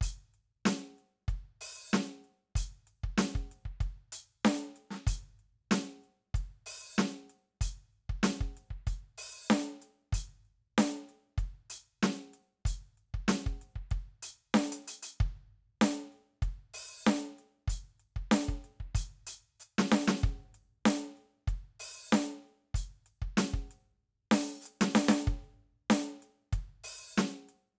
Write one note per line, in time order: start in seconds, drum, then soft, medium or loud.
0.01 closed hi-hat loud
0.01 kick medium
0.34 closed hi-hat soft
0.65 closed hi-hat loud
0.65 snare loud
0.98 closed hi-hat soft
1.28 kick medium
1.28 closed hi-hat soft
1.61 open hi-hat loud
1.93 open hi-hat medium
1.93 snare loud
1.93 hi-hat pedal medium
2.24 closed hi-hat soft
2.55 closed hi-hat loud
2.55 kick medium
2.87 closed hi-hat soft
3.04 kick medium
3.18 closed hi-hat loud
3.18 snare loud
3.35 kick medium
3.51 closed hi-hat soft
3.65 kick soft
3.80 kick medium
3.80 closed hi-hat soft
4.12 open hi-hat loud
4.45 closed hi-hat medium
4.45 snare loud
4.45 hi-hat pedal medium
4.76 closed hi-hat soft
4.91 snare medium
4.94 snare medium
5.07 closed hi-hat loud
5.07 kick medium
5.39 closed hi-hat soft
5.71 closed hi-hat loud
5.71 snare loud
6.04 closed hi-hat soft
6.34 kick medium
6.34 closed hi-hat medium
6.66 open hi-hat loud
6.98 closed hi-hat medium
6.98 snare loud
6.98 hi-hat pedal medium
7.30 closed hi-hat soft
7.61 closed hi-hat loud
7.61 kick medium
7.93 closed hi-hat soft
8.09 kick medium
8.23 closed hi-hat loud
8.23 snare loud
8.41 kick medium
8.57 closed hi-hat soft
8.70 kick soft
8.87 closed hi-hat medium
8.87 kick medium
9.18 open hi-hat loud
9.50 snare loud
9.50 closed hi-hat medium
9.50 hi-hat pedal medium
9.82 closed hi-hat medium
10.13 closed hi-hat loud
10.13 kick medium
10.45 closed hi-hat soft
10.78 closed hi-hat loud
10.78 snare loud
11.09 closed hi-hat soft
11.38 kick medium
11.38 closed hi-hat soft
11.70 open hi-hat loud
12.03 snare loud
12.03 closed hi-hat medium
12.03 hi-hat pedal medium
12.34 closed hi-hat soft
12.65 closed hi-hat loud
12.65 kick medium
12.97 closed hi-hat soft
13.14 kick medium
13.28 closed hi-hat loud
13.28 snare loud
13.46 kick medium
13.61 closed hi-hat soft
13.76 kick soft
13.91 kick medium
13.91 closed hi-hat soft
14.23 closed hi-hat loud
14.54 snare loud
14.72 closed hi-hat loud
14.88 closed hi-hat loud
15.03 closed hi-hat loud
15.20 kick medium
15.81 closed hi-hat loud
15.81 snare loud
16.12 closed hi-hat soft
16.42 kick medium
16.42 closed hi-hat soft
16.74 open hi-hat loud
17.06 snare loud
17.06 closed hi-hat soft
17.06 hi-hat pedal medium
17.39 closed hi-hat soft
17.68 closed hi-hat loud
17.68 kick medium
18.00 closed hi-hat soft
18.16 kick medium
18.31 closed hi-hat loud
18.31 snare loud
18.48 kick medium
18.64 closed hi-hat soft
18.80 kick soft
18.95 closed hi-hat loud
18.95 kick medium
19.27 closed hi-hat loud
19.60 hi-hat pedal medium
19.78 snare loud
19.92 snare loud
20.08 snare loud
20.23 kick medium
20.54 closed hi-hat soft
20.86 closed hi-hat loud
20.86 snare loud
21.17 closed hi-hat soft
21.48 kick medium
21.48 closed hi-hat soft
21.80 open hi-hat loud
22.12 closed hi-hat loud
22.12 snare loud
22.12 hi-hat pedal medium
22.74 closed hi-hat loud
22.74 kick medium
23.06 closed hi-hat soft
23.22 kick medium
23.37 closed hi-hat loud
23.37 snare loud
23.54 kick medium
23.71 closed hi-hat soft
24.31 open hi-hat loud
24.31 snare loud
24.61 hi-hat pedal medium
24.66 closed hi-hat medium
24.81 snare loud
24.81 closed hi-hat loud
24.95 closed hi-hat loud
24.95 snare loud
25.09 closed hi-hat medium
25.09 snare loud
25.27 kick medium
25.90 closed hi-hat loud
25.90 snare loud
26.22 closed hi-hat soft
26.53 kick medium
26.53 closed hi-hat medium
26.84 open hi-hat loud
27.18 closed hi-hat medium
27.18 snare loud
27.18 hi-hat pedal medium
27.49 closed hi-hat soft